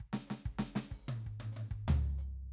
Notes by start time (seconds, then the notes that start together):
0.00 kick
0.13 snare
0.27 snare, hi-hat pedal
0.45 kick
0.58 snare
0.75 snare
0.90 kick, hi-hat pedal
1.08 high tom
1.26 kick
1.40 high tom
1.52 hi-hat pedal
1.56 high tom
1.71 kick
1.88 floor tom
2.18 hi-hat pedal